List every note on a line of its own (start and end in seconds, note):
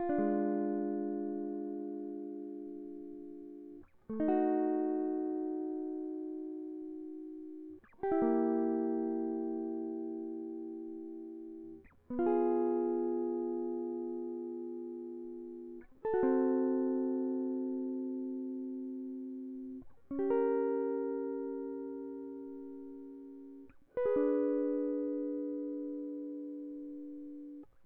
0.00 3.84 F4
0.10 3.82 D4
0.19 3.79 G#3
4.10 6.81 A3
4.20 7.78 D#4
4.29 7.80 F#4
8.03 11.83 G4
8.12 11.80 E4
8.23 11.80 A#3
12.11 15.87 B3
12.19 15.85 F4
12.26 15.82 G#4
16.05 18.87 A4
16.14 19.81 F#4
16.23 19.84 C4
20.11 23.69 C#4
20.19 23.69 G4
20.30 23.50 A#4
23.97 27.65 B4
24.06 27.18 G#4
24.16 27.66 D4